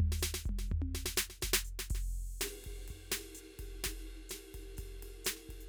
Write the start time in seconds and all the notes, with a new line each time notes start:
0.01 floor tom
0.13 snare
0.19 kick, hi-hat pedal
0.23 snare
0.35 snare
0.45 kick, hi-hat pedal
0.50 mid tom
0.55 kick
0.59 snare
0.68 floor tom, hi-hat pedal
0.73 kick
0.83 high tom
0.90 kick
0.95 snare
1.06 snare
1.17 snare, hi-hat pedal
1.31 snare
1.42 kick, snare, hi-hat pedal
1.50 kick
1.54 snare
1.64 kick, hi-hat pedal
1.80 snare
1.91 kick, crash
1.95 kick, snare
2.42 snare, hi-hat pedal, ride
2.48 snare
2.65 kick, ride
2.70 snare
2.74 snare
2.79 snare
2.81 snare
2.89 kick, hi-hat pedal, ride
2.96 kick
3.12 snare, ride
3.22 snare
3.36 hi-hat pedal, ride
3.45 snare
3.50 snare
3.54 snare
3.60 kick, ride
3.65 kick
3.85 kick, snare, hi-hat pedal, ride
3.92 kick
4.00 snare
4.30 snare, hi-hat pedal, ride
4.55 kick, ride
4.60 kick
4.69 snare
4.74 snare, hi-hat pedal
4.79 kick, ride
4.85 kick
5.03 ride
5.25 snare, hi-hat pedal, ride
5.37 snare
5.50 kick, ride
5.55 kick
5.61 open hi-hat